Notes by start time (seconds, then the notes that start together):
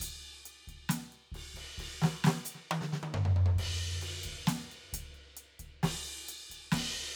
0.01 closed hi-hat, kick
0.23 closed hi-hat
0.46 closed hi-hat
0.68 kick, closed hi-hat
0.90 snare, closed hi-hat
1.12 closed hi-hat
1.32 kick, crash
1.55 kick, ride
1.78 kick, crash
2.02 snare
2.04 snare
2.24 snare
2.27 snare
2.45 hi-hat pedal
2.55 snare
2.71 high tom
2.82 snare
2.93 snare
3.03 closed hi-hat, high tom
3.14 floor tom
3.26 floor tom
3.37 floor tom
3.46 floor tom
3.56 kick, ride
4.02 crash
4.24 kick, closed hi-hat
4.48 snare, closed hi-hat
4.72 closed hi-hat
4.93 kick, closed hi-hat
5.15 closed hi-hat
5.37 closed hi-hat
5.60 kick, closed hi-hat
5.83 kick, snare, crash
6.05 closed hi-hat
6.29 closed hi-hat
6.50 kick, closed hi-hat
6.72 kick, snare, hi-hat pedal, ride
6.94 kick
7.11 hi-hat pedal